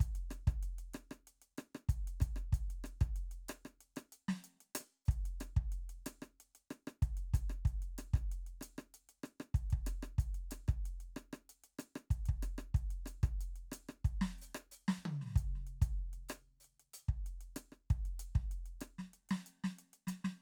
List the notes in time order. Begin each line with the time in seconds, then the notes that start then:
0.01 kick, closed hi-hat
0.16 closed hi-hat
0.31 cross-stick, closed hi-hat
0.48 kick, cross-stick
0.64 closed hi-hat
0.79 closed hi-hat
0.94 cross-stick, closed hi-hat
1.12 cross-stick
1.28 closed hi-hat
1.43 closed hi-hat
1.59 cross-stick, closed hi-hat
1.76 cross-stick
1.89 kick, closed hi-hat
2.08 closed hi-hat
2.21 kick, cross-stick, closed hi-hat
2.37 cross-stick
2.53 kick, closed hi-hat
2.71 closed hi-hat
2.85 cross-stick, closed hi-hat
3.02 kick, cross-stick
3.17 closed hi-hat
3.32 closed hi-hat
3.49 cross-stick, closed hi-hat
3.66 cross-stick
3.81 closed hi-hat
3.97 cross-stick, closed hi-hat
4.13 closed hi-hat
4.29 snare
4.45 closed hi-hat
4.61 closed hi-hat
4.76 cross-stick, open hi-hat
4.81 cross-stick
5.06 kick, hi-hat pedal
5.12 closed hi-hat
5.26 closed hi-hat
5.41 cross-stick, closed hi-hat
5.57 kick
5.73 closed hi-hat
5.90 closed hi-hat
6.07 cross-stick, closed hi-hat
6.23 cross-stick
6.41 closed hi-hat
6.56 closed hi-hat
6.71 cross-stick, closed hi-hat
6.88 cross-stick
7.03 kick, closed hi-hat
7.18 closed hi-hat
7.34 kick, cross-stick, closed hi-hat
7.50 cross-stick
7.66 kick, closed hi-hat
7.83 closed hi-hat
7.99 cross-stick, closed hi-hat
8.14 kick, cross-stick
8.32 closed hi-hat
8.47 closed hi-hat
8.62 cross-stick, closed hi-hat
8.79 cross-stick
8.95 closed hi-hat
9.10 closed hi-hat
9.24 cross-stick, closed hi-hat
9.41 cross-stick
9.55 kick, closed hi-hat
9.71 kick, closed hi-hat
9.87 cross-stick, closed hi-hat
10.03 cross-stick
10.19 kick, closed hi-hat
10.35 closed hi-hat
10.52 cross-stick, closed hi-hat
10.69 kick, cross-stick
10.86 closed hi-hat
11.01 closed hi-hat
11.17 cross-stick
11.34 cross-stick
11.50 closed hi-hat
11.64 closed hi-hat
11.80 cross-stick, closed hi-hat
11.96 cross-stick
12.11 kick, closed hi-hat
12.26 kick, closed hi-hat
12.43 cross-stick, closed hi-hat
12.59 cross-stick
12.75 kick, closed hi-hat
12.91 closed hi-hat
13.07 cross-stick, closed hi-hat
13.24 kick, cross-stick
13.41 closed hi-hat
13.57 closed hi-hat
13.72 cross-stick, closed hi-hat
13.89 cross-stick
14.05 kick, closed hi-hat
14.22 snare
14.39 hi-hat pedal, open hi-hat
14.55 cross-stick
14.72 hi-hat pedal
14.89 snare
14.98 kick
15.06 high tom
15.22 snare
15.27 snare
15.30 snare
15.33 kick, snare
15.38 closed hi-hat
15.56 snare
15.68 closed hi-hat
15.82 kick, closed hi-hat
16.14 closed hi-hat
16.30 closed hi-hat, cross-stick
16.61 hi-hat pedal
16.65 closed hi-hat
16.80 closed hi-hat
16.94 closed hi-hat
17.09 kick
17.27 closed hi-hat
17.41 closed hi-hat
17.57 cross-stick, closed hi-hat
17.73 cross-stick
17.91 kick, closed hi-hat
18.06 closed hi-hat
18.20 closed hi-hat
18.36 kick, snare
18.52 closed hi-hat
18.66 closed hi-hat
18.82 cross-stick, closed hi-hat
18.99 snare
19.14 closed hi-hat
19.30 snare, closed hi-hat
19.47 closed hi-hat
19.65 snare
19.79 closed hi-hat
19.94 closed hi-hat
20.08 snare, closed hi-hat
20.25 snare